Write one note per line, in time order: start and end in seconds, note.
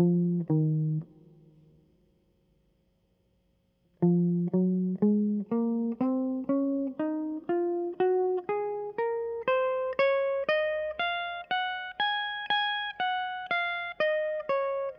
0.00 0.45 F3
0.51 1.03 D#3
4.03 4.51 F3
4.54 4.99 F#3
5.03 5.44 G#3
5.52 5.96 A#3
6.01 6.47 C4
6.49 6.92 C#4
6.99 7.41 D#4
7.49 7.95 F4
8.00 8.41 F#4
8.49 8.94 G#4
8.98 9.44 A#4
9.48 9.95 C5
9.99 10.46 C#5
10.49 10.94 D#5
10.99 11.45 F5
11.51 11.94 F#5
12.00 12.49 G#5
12.50 12.94 G#5
13.00 13.49 F#5
13.51 13.94 F5
14.00 14.44 D#5
14.49 14.93 C#5